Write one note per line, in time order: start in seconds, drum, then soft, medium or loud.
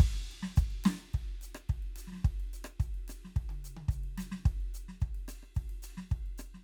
0.01 kick loud
0.01 ride bell medium
0.13 snare soft
0.32 ride soft
0.43 snare medium
0.57 kick loud
0.57 hi-hat pedal medium
0.57 ride medium
0.71 ride soft
0.80 kick soft
0.85 snare loud
0.85 ride medium
1.00 cross-stick soft
1.15 kick medium
1.15 ride medium
1.28 cross-stick soft
1.42 hi-hat pedal medium
1.42 ride medium
1.56 cross-stick medium
1.70 kick medium
1.70 hi-hat pedal soft
1.70 ride soft
1.83 ride soft
1.97 hi-hat pedal medium
1.97 ride medium
2.08 snare soft
2.13 snare soft
2.16 snare soft
2.20 snare soft
2.24 kick medium
2.24 snare soft
2.24 hi-hat pedal soft
2.24 ride soft
2.41 ride soft
2.54 hi-hat pedal medium
2.54 ride medium
2.65 cross-stick medium
2.81 kick medium
2.81 hi-hat pedal soft
2.81 ride soft
2.95 ride soft
3.09 cross-stick medium
3.09 hi-hat pedal medium
3.09 ride medium
3.25 snare soft
3.37 kick medium
3.37 ride soft
3.50 high tom medium
3.50 ride soft
3.65 hi-hat pedal medium
3.65 ride medium
3.78 high tom medium
3.89 kick medium
3.89 hi-hat pedal soft
3.89 ride soft
4.05 ride soft
4.18 snare medium
4.18 hi-hat pedal medium
4.18 ride medium
4.32 snare medium
4.46 kick medium
4.46 hi-hat pedal soft
4.46 ride soft
4.61 ride soft
4.75 hi-hat pedal medium
4.75 ride soft
4.89 snare soft
5.01 kick medium
5.01 hi-hat pedal soft
5.01 ride bell soft
5.16 ride soft
5.29 cross-stick medium
5.29 hi-hat pedal medium
5.29 ride bell medium
5.44 cross-stick soft
5.55 kick medium
5.55 hi-hat pedal soft
5.55 ride medium
5.70 ride soft
5.83 hi-hat pedal medium
5.83 ride bell medium
5.98 snare soft
6.10 kick medium
6.10 hi-hat pedal soft
6.10 ride soft
6.27 ride soft
6.39 cross-stick medium
6.39 hi-hat pedal medium
6.39 ride bell soft
6.55 snare soft